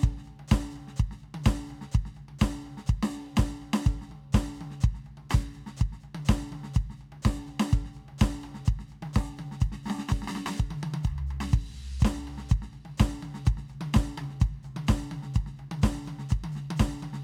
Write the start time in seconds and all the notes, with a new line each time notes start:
0.01 kick, hi-hat pedal
0.06 high tom
0.18 snare
0.24 hi-hat pedal
0.28 high tom
0.40 high tom
0.48 kick, snare, hi-hat pedal
0.65 high tom
0.71 hi-hat pedal
0.76 high tom
0.88 snare
0.97 kick, hi-hat pedal, high tom
1.12 snare
1.18 hi-hat pedal
1.24 high tom
1.35 high tom
1.44 kick, snare, hi-hat pedal
1.59 high tom
1.67 hi-hat pedal, high tom
1.82 snare
1.92 kick, hi-hat pedal, high tom
2.06 snare
2.15 hi-hat pedal, high tom
2.29 high tom
2.39 kick, snare, hi-hat pedal
2.54 high tom
2.62 hi-hat pedal
2.66 high tom
2.78 snare
2.87 kick, hi-hat pedal
2.93 high tom
3.03 snare
3.10 hi-hat pedal
3.15 high tom
3.27 high tom
3.37 kick, snare, hi-hat pedal
3.50 high tom
3.60 hi-hat pedal, high tom
3.74 snare
3.85 kick, hi-hat pedal, high tom
4.02 snare
4.07 hi-hat pedal
4.12 high tom
4.33 kick, snare, hi-hat pedal
4.49 high tom
4.55 hi-hat pedal
4.61 high tom
4.71 snare
4.81 kick, hi-hat pedal, high tom
4.95 snare
5.04 hi-hat pedal, high tom
5.18 high tom
5.30 snare, hi-hat pedal
5.35 kick
5.44 high tom
5.54 hi-hat pedal, high tom
5.67 snare
5.77 hi-hat pedal, high tom
5.82 kick
5.93 snare
6.00 hi-hat pedal, high tom
6.15 high tom
6.25 kick, snare, hi-hat pedal
6.41 high tom
6.49 hi-hat pedal
6.53 high tom
6.64 snare
6.74 kick, hi-hat pedal, high tom
6.90 snare
6.97 hi-hat pedal
7.01 high tom
7.12 high tom
7.23 kick, snare, hi-hat pedal
7.38 high tom
7.46 hi-hat pedal, high tom
7.60 snare
7.71 kick, hi-hat pedal, high tom
7.85 snare
7.94 hi-hat pedal, high tom
8.09 high tom
8.19 kick, snare, hi-hat pedal
8.32 high tom
8.42 hi-hat pedal, high tom
8.55 snare
8.66 kick, hi-hat pedal, high tom
8.80 snare
8.88 hi-hat pedal
8.93 high tom
9.03 high tom
9.14 kick, snare, hi-hat pedal
9.27 high tom
9.37 hi-hat pedal, high tom
9.52 snare
9.61 kick, hi-hat pedal, high tom
9.72 snare
9.84 snare, hi-hat pedal
9.90 snare
9.99 snare
10.09 kick, snare, hi-hat pedal
10.22 snare
10.28 snare, hi-hat pedal
10.36 snare
10.47 snare
10.57 kick, hi-hat pedal, high tom
10.71 high tom
10.78 hi-hat pedal
10.84 high tom
10.94 high tom
11.04 kick, floor tom, hi-hat pedal
11.19 floor tom
11.27 floor tom, hi-hat pedal
11.41 snare
11.52 kick, hi-hat pedal, crash
11.74 hi-hat pedal
12.00 kick, hi-hat pedal
12.05 snare
12.16 high tom
12.25 hi-hat pedal, high tom
12.38 snare
12.49 kick, hi-hat pedal, high tom
12.63 snare
12.73 hi-hat pedal, high tom
12.86 high tom
12.98 kick, snare, hi-hat pedal
13.12 high tom
13.21 hi-hat pedal, high tom
13.35 snare
13.46 kick, hi-hat pedal, high tom
13.58 snare
13.69 hi-hat pedal, high tom
13.81 high tom
13.94 kick, snare, hi-hat pedal
14.06 high tom
14.17 hi-hat pedal, high tom
14.30 snare
14.41 kick, hi-hat pedal, high tom
14.63 hi-hat pedal, high tom
14.77 high tom
14.88 kick, snare, hi-hat pedal
15.01 high tom
15.10 hi-hat pedal, high tom
15.23 snare
15.35 kick, hi-hat pedal, high tom
15.47 snare
15.57 hi-hat pedal, high tom
15.72 high tom
15.82 kick, snare, hi-hat pedal
15.96 high tom
16.05 hi-hat pedal, high tom
16.19 snare
16.30 kick, snare, hi-hat pedal
16.44 high tom
16.52 snare, hi-hat pedal
16.71 high tom
16.77 kick, snare, hi-hat pedal
16.92 high tom
16.99 hi-hat pedal, high tom
17.14 snare